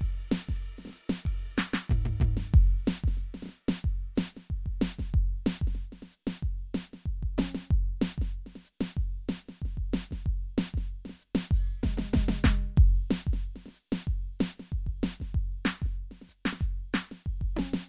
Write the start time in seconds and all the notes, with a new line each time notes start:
0.01 kick, ride
0.32 snare, hi-hat pedal, ride
0.49 kick, snare
0.63 ride
0.78 snare
0.85 snare
0.88 snare
0.89 snare, ride
0.94 hi-hat pedal
1.09 snare
1.25 kick, ride
1.55 kick, snare, hi-hat pedal, ride
1.74 snare
1.89 kick, floor tom, hi-hat pedal
2.05 floor tom
2.20 kick, floor tom
2.37 snare
2.54 kick, hi-hat pedal, crash
2.87 snare, hi-hat pedal, crash
3.04 kick, snare
3.17 snare, hi-hat pedal
3.34 snare
3.42 snare
3.46 snare
3.49 snare, hi-hat pedal, crash
3.68 snare
3.84 kick, crash
4.01 crash
4.16 snare, hi-hat pedal, crash
4.37 snare
4.50 kick, crash
4.66 kick, crash
4.81 snare, hi-hat pedal, crash
4.99 kick, snare
5.14 kick, crash
5.46 snare, hi-hat pedal, crash
5.62 kick
5.67 snare
5.75 snare, crash
5.92 snare
6.02 snare
6.10 hi-hat pedal, crash
6.27 snare
6.42 kick, crash
6.58 crash
6.74 snare, hi-hat pedal, crash
6.93 snare
7.06 kick, crash
7.23 kick
7.37 snare, hi-hat pedal, high tom
7.55 snare
7.71 kick, crash
8.02 snare, hi-hat pedal, crash
8.18 kick, snare
8.31 crash
8.46 snare
8.55 snare
8.64 hi-hat pedal, crash
8.81 snare
8.97 kick, crash
9.12 crash
9.28 snare, hi-hat pedal, crash
9.49 snare
9.61 kick, snare, crash
9.77 kick, crash
9.93 snare, hi-hat pedal, crash
10.11 kick, snare
10.26 kick, crash
10.58 snare, hi-hat pedal, crash
10.74 kick, snare
10.89 crash
11.05 snare
11.09 kick, snare
11.17 hi-hat pedal, crash
11.35 snare
11.50 kick, hi-hat pedal, crash
11.83 kick, snare, mid tom
11.97 snare, mid tom
12.13 kick, snare, mid tom
12.28 snare, mid tom
12.44 kick, snare, hi-hat pedal, mid tom
12.77 kick, crash
13.10 snare, hi-hat pedal, crash
13.27 kick
13.33 snare
13.56 snare
13.66 snare
13.68 snare
13.74 hi-hat pedal, crash
13.92 snare
14.07 kick, crash
14.24 crash
14.39 snare, hi-hat pedal, crash
14.60 snare
14.72 kick, crash
14.87 kick, crash
15.03 snare, hi-hat pedal, crash
15.20 kick, snare
15.35 kick, crash
15.65 snare, hi-hat pedal
15.82 kick, snare
15.95 crash
16.11 snare
16.22 snare
16.27 kick, hi-hat pedal, crash
16.45 snare
16.53 snare
16.61 kick, crash
16.77 crash
16.93 snare, hi-hat pedal, crash
17.11 snare
17.25 kick, snare, crash
17.41 kick
17.57 snare, hi-hat pedal, high tom
17.74 snare